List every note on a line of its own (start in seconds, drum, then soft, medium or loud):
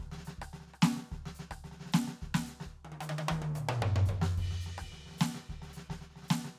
0.01 kick soft
0.01 snare soft
0.07 kick soft
0.13 snare soft
0.19 snare soft
0.26 snare soft
0.26 hi-hat pedal soft
0.39 kick soft
0.39 cross-stick medium
0.54 snare soft
0.61 snare soft
0.68 snare soft
0.75 cross-stick soft
0.83 snare loud
0.83 hi-hat pedal soft
0.97 snare soft
1.13 kick soft
1.13 snare soft
1.19 kick soft
1.27 snare medium
1.36 hi-hat pedal soft
1.40 snare soft
1.52 kick soft
1.52 cross-stick medium
1.65 snare soft
1.72 snare soft
1.78 snare soft
1.81 snare soft
1.87 snare soft
1.93 snare loud
1.93 hi-hat pedal soft
2.09 snare soft
2.22 kick soft
2.22 snare soft
2.30 kick soft
2.35 snare loud
2.47 snare soft
2.47 hi-hat pedal soft
2.61 snare medium
2.67 kick soft
2.86 high tom medium
2.93 high tom medium
3.02 hi-hat pedal medium
3.02 high tom medium
3.10 high tom medium
3.19 high tom medium
3.32 kick soft
3.38 kick soft
3.43 high tom loud
3.56 hi-hat pedal medium
3.56 mid tom medium
3.70 mid tom loud
3.82 kick soft
3.82 floor tom loud
3.97 floor tom loud
4.07 kick soft
4.07 hi-hat pedal soft
4.07 floor tom medium
4.16 kick soft
4.23 snare medium
4.39 kick medium
4.39 ride medium
4.52 kick soft
4.52 snare soft
4.62 hi-hat pedal soft
4.67 snare soft
4.79 kick soft
4.79 cross-stick medium
4.93 snare soft
4.99 snare soft
5.07 snare soft
5.12 snare soft
5.16 snare soft
5.16 hi-hat pedal medium
5.22 snare loud
5.36 snare soft
5.50 kick soft
5.50 snare soft
5.63 snare soft
5.68 snare soft
5.73 snare soft
5.73 hi-hat pedal soft
5.78 snare soft
5.90 kick soft
5.90 snare medium
6.02 snare soft
6.11 snare soft
6.17 snare soft
6.24 snare soft
6.29 snare loud
6.29 hi-hat pedal soft
6.46 snare soft